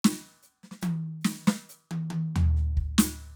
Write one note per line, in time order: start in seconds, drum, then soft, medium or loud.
0.04 snare loud
0.43 hi-hat pedal soft
0.63 snare soft
0.71 snare soft
0.81 hi-hat pedal medium
0.81 high tom loud
1.21 snare loud
1.21 hi-hat pedal soft
1.47 snare loud
1.69 hi-hat pedal medium
1.91 high tom loud
2.10 high tom loud
2.36 floor tom loud
2.56 snare soft
2.77 kick soft
2.98 open hi-hat loud
2.98 snare loud